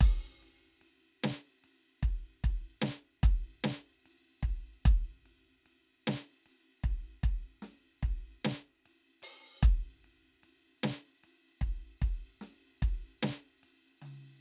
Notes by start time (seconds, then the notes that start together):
0.01 kick, ride, percussion
0.43 ride
0.82 ride
1.23 snare, hi-hat pedal, ride
1.64 ride
2.03 kick, ride
2.44 kick, ride
2.82 snare
3.21 kick, snare
3.26 ride
3.64 snare, ride
4.06 ride
4.43 kick, ride
4.86 kick, ride
5.26 ride
5.66 ride
6.08 snare, ride
6.21 snare
6.46 ride
6.84 kick, ride
7.24 kick, ride
7.62 snare, ride
8.03 kick, ride
8.45 snare
8.58 snare
8.86 ride
9.22 ride, percussion
9.63 kick, hi-hat pedal, ride
10.05 ride
10.44 ride
10.84 snare, ride
10.98 snare
11.00 snare
11.24 ride
11.62 kick, ride
12.02 kick, ride
12.42 snare, ride
12.83 kick, ride
13.23 snare, ride
13.63 ride
14.02 high tom, ride